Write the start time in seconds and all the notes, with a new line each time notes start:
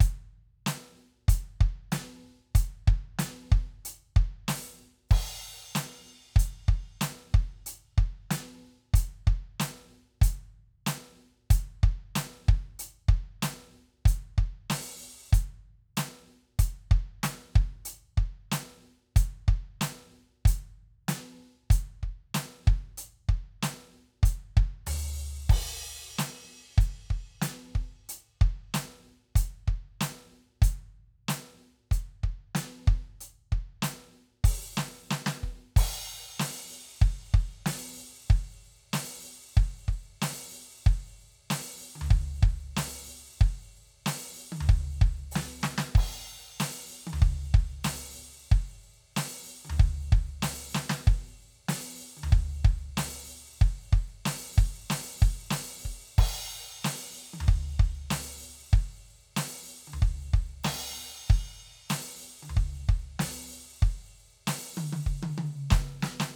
0.01 closed hi-hat, kick
0.67 closed hi-hat, snare
1.29 closed hi-hat, kick
1.61 kick
1.92 closed hi-hat, snare
2.56 closed hi-hat, kick
2.88 kick
3.19 closed hi-hat, snare
3.52 kick
3.86 closed hi-hat
4.17 kick
4.49 open hi-hat, snare
5.09 kick, hi-hat pedal, crash
5.76 closed hi-hat, snare
6.37 closed hi-hat, kick
6.69 kick
7.02 closed hi-hat, snare
7.35 kick
7.67 closed hi-hat
7.98 kick
8.31 closed hi-hat, snare
8.94 closed hi-hat, kick
9.28 kick
9.60 closed hi-hat, snare
10.22 closed hi-hat, kick
10.87 closed hi-hat, snare
11.51 closed hi-hat, kick
11.84 kick
12.16 closed hi-hat, snare
12.49 kick
12.80 closed hi-hat
13.09 kick
13.43 closed hi-hat, snare
14.06 closed hi-hat, kick
14.38 kick
14.70 open hi-hat, snare
15.30 kick, hi-hat pedal
15.34 closed hi-hat
15.97 closed hi-hat, snare
16.60 closed hi-hat, kick
16.92 kick
17.24 closed hi-hat, snare
17.56 kick
17.86 closed hi-hat
18.18 kick
18.52 closed hi-hat, snare
19.17 closed hi-hat, kick
19.49 kick
19.82 closed hi-hat, snare
20.46 closed hi-hat, kick
21.09 closed hi-hat, snare
21.71 closed hi-hat, kick
22.03 kick
22.35 closed hi-hat, snare
22.68 kick
22.98 closed hi-hat
23.29 kick
23.63 closed hi-hat, snare
24.24 closed hi-hat, kick
24.57 kick
24.87 open hi-hat, floor tom
25.49 kick, hi-hat pedal, crash
26.19 closed hi-hat, snare
26.78 closed hi-hat, kick
27.11 kick
27.42 closed hi-hat, snare
27.76 kick
28.10 closed hi-hat
28.42 kick
28.75 closed hi-hat, snare
29.36 closed hi-hat, kick
29.68 kick
30.01 closed hi-hat, snare
30.63 closed hi-hat, kick
31.29 closed hi-hat, snare
31.39 snare
31.92 closed hi-hat, kick
32.24 kick
32.55 closed hi-hat, snare
32.88 kick
33.21 closed hi-hat
33.53 kick
33.83 closed hi-hat, snare
34.45 open hi-hat, kick
34.78 snare
35.09 snare, hi-hat pedal
35.27 snare
35.44 kick
35.77 open hi-hat, kick, crash
36.40 open hi-hat, snare
37.02 kick
37.34 kick
37.66 open hi-hat, snare
38.31 kick
38.94 open hi-hat, snare
39.57 kick
39.89 kick
40.22 open hi-hat, snare
40.30 snare
40.87 kick
41.51 open hi-hat, snare
41.96 high tom
42.02 floor tom
42.11 kick
42.43 kick
42.77 open hi-hat, snare
43.41 kick
44.07 open hi-hat, snare
44.53 high tom
44.61 floor tom
44.70 kick
45.02 kick
45.32 open hi-hat
45.36 snare
45.64 snare
45.78 snare
45.96 kick, crash
46.61 open hi-hat, snare
47.07 high tom
47.14 floor tom
47.22 kick
47.55 kick
47.85 open hi-hat, snare
48.52 kick
49.17 open hi-hat, snare
49.65 high tom
49.70 floor tom
49.80 kick
50.13 kick
50.43 open hi-hat, snare
50.75 snare
50.90 snare
51.08 kick
51.69 open hi-hat, snare
52.17 high tom
52.24 floor tom
52.33 kick
52.65 kick
52.98 open hi-hat, snare
53.62 kick
53.93 kick
54.26 open hi-hat, snare
54.53 snare
54.58 kick
54.91 open hi-hat, snare
55.23 kick
55.51 open hi-hat, snare
55.86 kick
56.19 kick, crash
56.85 open hi-hat, snare
57.34 high tom
57.41 floor tom
57.49 kick
57.80 kick
58.11 open hi-hat, snare
58.74 kick
59.37 open hi-hat, snare
59.88 high tom
59.94 floor tom
60.03 kick
60.34 kick
60.64 snare, crash
61.30 kick
61.90 open hi-hat, snare
62.43 high tom
62.50 floor tom
62.57 kick
62.89 kick
63.20 open hi-hat, snare
63.83 kick
63.94 snare
64.48 open hi-hat, snare
64.78 high tom
64.93 high tom
65.07 kick
65.23 high tom
65.38 high tom
65.71 kick, snare
66.03 snare
66.20 snare